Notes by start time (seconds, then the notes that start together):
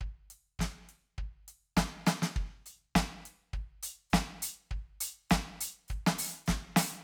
0.01 kick
0.30 closed hi-hat
0.59 kick, snare, closed hi-hat
0.89 closed hi-hat
1.18 kick
1.48 closed hi-hat
1.77 kick, snare
2.07 closed hi-hat, snare
2.22 snare
2.36 kick
2.66 closed hi-hat
2.95 kick, snare, closed hi-hat
3.26 closed hi-hat
3.53 kick, closed hi-hat
3.83 closed hi-hat
4.10 kick, snare, hi-hat pedal
4.42 closed hi-hat
4.71 kick, closed hi-hat
5.01 closed hi-hat
5.30 kick, snare, hi-hat pedal
5.61 closed hi-hat
5.88 kick, hi-hat pedal
6.07 snare
6.19 open hi-hat
6.46 kick, snare, hi-hat pedal
6.76 open hi-hat, snare